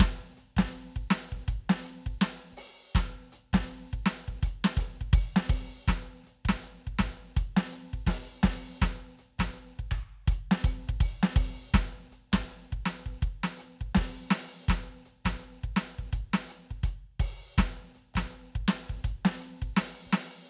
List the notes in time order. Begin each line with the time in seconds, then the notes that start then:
0.01 open hi-hat, kick, snare, hi-hat pedal
0.21 kick, closed hi-hat
0.38 closed hi-hat
0.57 kick, snare, closed hi-hat
0.75 closed hi-hat
0.97 kick
1.11 closed hi-hat, snare
1.33 kick
1.49 closed hi-hat, kick
1.70 snare
1.85 closed hi-hat
2.07 kick
2.22 open hi-hat, snare, hi-hat pedal
2.53 kick
2.58 open hi-hat
2.96 open hi-hat, kick, snare
3.00 hi-hat pedal
3.17 closed hi-hat
3.31 closed hi-hat, hi-hat pedal
3.54 kick, snare, closed hi-hat
3.71 closed hi-hat
3.94 kick, closed hi-hat
4.07 closed hi-hat, snare
4.29 kick, closed hi-hat
4.44 closed hi-hat, kick
4.65 snare
4.78 open hi-hat, kick
4.82 hi-hat pedal
5.02 kick, closed hi-hat
5.12 open hi-hat, kick, hi-hat pedal
5.37 snare
5.49 open hi-hat, kick
5.88 closed hi-hat, kick, snare, hi-hat pedal
6.11 closed hi-hat
6.24 closed hi-hat, snare
6.46 kick, snare
6.50 closed hi-hat
6.64 closed hi-hat
6.87 kick, closed hi-hat
7.00 closed hi-hat, kick, snare
7.37 closed hi-hat, kick
7.57 snare
7.73 closed hi-hat
7.93 kick, closed hi-hat
8.07 open hi-hat, kick, snare
8.44 open hi-hat, kick, snare
8.82 open hi-hat, kick, snare, hi-hat pedal
9.04 closed hi-hat
9.16 closed hi-hat, hi-hat pedal
9.39 kick, snare, closed hi-hat
9.56 closed hi-hat
9.79 kick, closed hi-hat
9.92 closed hi-hat, kick, cross-stick
10.27 kick, hi-hat pedal
10.31 closed hi-hat
10.52 snare
10.65 open hi-hat, kick
10.69 hi-hat pedal
10.88 kick, closed hi-hat
11.01 open hi-hat, kick
11.24 snare
11.37 open hi-hat, kick
11.75 open hi-hat, kick, snare, hi-hat pedal
11.97 closed hi-hat
12.12 closed hi-hat, kick
12.33 kick, snare, closed hi-hat
12.50 closed hi-hat
12.71 kick, closed hi-hat
12.86 closed hi-hat, snare
13.07 kick, closed hi-hat
13.23 closed hi-hat, kick
13.44 snare
13.59 closed hi-hat
13.79 kick, closed hi-hat
13.96 open hi-hat, kick, snare
14.31 open hi-hat, snare
14.69 closed hi-hat, kick, snare, hi-hat pedal
14.92 closed hi-hat
15.06 closed hi-hat
15.26 kick, snare, closed hi-hat
15.41 closed hi-hat
15.62 kick, closed hi-hat
15.77 closed hi-hat, snare
15.99 kick, closed hi-hat
16.14 closed hi-hat, kick
16.34 snare
16.50 closed hi-hat
16.71 kick, closed hi-hat
16.84 open hi-hat, kick
17.20 open hi-hat, kick
17.59 open hi-hat, kick, snare, hi-hat pedal
17.80 closed hi-hat
17.96 closed hi-hat
18.15 kick, snare, closed hi-hat
18.33 closed hi-hat
18.54 kick, closed hi-hat
18.69 closed hi-hat, snare
18.90 kick, closed hi-hat
19.05 closed hi-hat, kick
19.26 snare
19.41 closed hi-hat
19.61 kick, closed hi-hat
19.77 open hi-hat, snare
20.07 kick
20.13 open hi-hat, snare